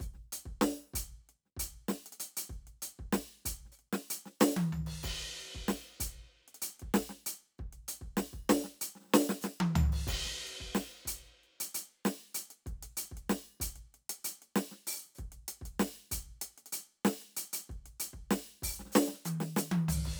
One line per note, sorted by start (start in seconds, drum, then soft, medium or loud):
0.03 kick medium
0.03 closed hi-hat soft
0.03 hi-hat pedal soft
0.14 snare soft
0.32 closed hi-hat loud
0.45 kick soft
0.61 snare loud
0.94 closed hi-hat loud
0.94 kick medium
1.29 closed hi-hat soft
1.45 snare soft
1.57 closed hi-hat loud
1.57 kick soft
1.88 snare loud
2.06 closed hi-hat medium
2.12 closed hi-hat medium
2.20 closed hi-hat loud
2.37 closed hi-hat loud
2.49 kick soft
2.49 closed hi-hat soft
2.67 closed hi-hat soft
2.82 closed hi-hat loud
2.99 kick soft
3.13 snare loud
3.45 closed hi-hat loud
3.45 kick soft
3.65 snare soft
3.72 hi-hat pedal soft
3.79 closed hi-hat soft
3.93 snare medium
4.10 closed hi-hat loud
4.26 snare soft
4.40 snare loud
4.40 hi-hat pedal medium
4.56 high tom loud
4.72 floor tom medium
4.86 kick soft
4.86 crash medium
5.03 kick medium
5.03 ride loud
5.39 closed hi-hat soft
5.55 kick soft
5.68 snare loud
6.00 closed hi-hat loud
6.00 kick medium
6.48 closed hi-hat soft
6.54 closed hi-hat medium
6.62 closed hi-hat loud
6.79 kick soft
6.79 closed hi-hat soft
6.94 snare loud
7.09 snare soft
7.26 closed hi-hat loud
7.44 closed hi-hat soft
7.58 kick soft
7.58 closed hi-hat soft
7.73 closed hi-hat soft
7.88 closed hi-hat loud
8.01 kick soft
8.17 snare loud
8.33 kick soft
8.49 snare loud
8.64 snare soft
8.81 closed hi-hat loud
8.95 snare soft
9.00 snare soft
9.04 snare soft
9.08 snare soft
9.11 snare soft
9.14 snare loud
9.29 snare loud
9.41 snare medium
9.41 hi-hat pedal medium
9.60 high tom loud
9.75 floor tom loud
9.89 kick soft
9.89 crash medium
10.07 kick medium
10.07 ride loud
10.25 snare soft
10.47 closed hi-hat soft
10.60 kick soft
10.75 snare loud
11.05 closed hi-hat loud
11.05 kick soft
11.24 closed hi-hat soft
11.43 closed hi-hat soft
11.60 closed hi-hat loud
11.74 closed hi-hat loud
12.05 snare loud
12.05 crash soft
12.34 closed hi-hat loud
12.50 closed hi-hat medium
12.66 kick medium
12.66 closed hi-hat soft
12.83 closed hi-hat medium
12.97 closed hi-hat loud
13.11 kick soft
13.17 closed hi-hat soft
13.29 snare loud
13.60 closed hi-hat loud
13.60 kick medium
13.76 closed hi-hat soft
13.94 closed hi-hat soft
14.09 closed hi-hat loud
14.24 closed hi-hat loud
14.42 closed hi-hat soft
14.56 snare loud
14.71 snare soft
14.87 open hi-hat loud
15.15 kick soft
15.15 closed hi-hat soft
15.15 hi-hat pedal soft
15.32 closed hi-hat soft
15.48 closed hi-hat loud
15.61 kick soft
15.65 closed hi-hat medium
15.79 snare loud
16.11 closed hi-hat loud
16.11 kick soft
16.41 closed hi-hat loud
16.58 closed hi-hat soft
16.66 closed hi-hat medium
16.72 closed hi-hat loud
17.05 snare loud
17.22 closed hi-hat soft
17.37 closed hi-hat loud
17.53 closed hi-hat loud
17.69 kick soft
17.69 closed hi-hat soft
17.86 closed hi-hat soft
18.00 closed hi-hat loud
18.13 kick soft
18.31 snare loud
18.62 open hi-hat loud
18.62 kick medium
18.79 snare soft
18.85 snare soft
18.90 snare soft
18.90 hi-hat pedal medium
18.95 snare loud
19.08 snare soft
19.13 snare soft
19.25 hi-hat pedal loud
19.25 high tom medium
19.40 snare medium
19.56 snare loud
19.56 hi-hat pedal loud
19.71 high tom loud
19.88 floor tom medium
19.88 hi-hat pedal loud
20.05 kick soft
20.05 crash medium